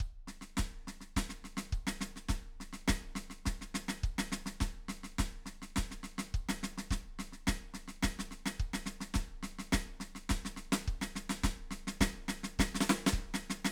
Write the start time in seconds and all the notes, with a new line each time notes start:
0.00 kick
0.27 snare
0.41 snare
0.57 kick, snare
0.87 snare
1.00 snare
1.16 kick, snare
1.29 snare
1.44 snare
1.57 snare
1.72 kick
1.87 snare
2.01 snare
2.16 snare
2.28 kick, snare
2.60 snare
2.73 snare
2.88 kick, snare
3.15 snare
3.30 snare
3.45 kick, snare
3.61 snare
3.74 snare
3.88 snare
4.03 kick
4.18 snare
4.32 snare
4.46 snare
4.60 kick, snare
4.88 snare
5.03 snare
5.18 kick, snare
5.46 snare
5.62 snare
5.76 kick, snare
5.91 snare
6.03 snare
6.18 snare
6.34 kick
6.49 snare, open hi-hat
6.63 snare
6.78 snare
6.90 kick, snare
7.19 snare
7.32 snare
7.47 kick, snare
7.74 snare
7.88 snare
8.03 kick, snare
8.19 snare
8.31 snare
8.46 snare
8.60 kick
8.73 snare
8.86 snare
9.00 snare
9.14 kick, snare
9.43 snare
9.58 snare
9.72 kick, snare
10.00 snare
10.15 snare
10.29 kick, snare
10.45 snare
10.56 snare
10.72 snare
10.88 kick
11.01 snare
11.15 snare
11.29 snare
11.43 kick, snare
11.71 snare
11.87 snare
12.00 kick, snare
12.28 snare
12.43 snare
12.59 kick, snare, open hi-hat
12.75 snare
12.80 snare
12.89 snare
13.06 snare
13.13 kick
13.34 snare
13.50 snare
13.65 snare